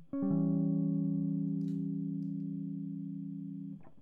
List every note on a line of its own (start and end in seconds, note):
0.13 3.74 C#4
0.23 3.80 G3
0.31 3.79 E3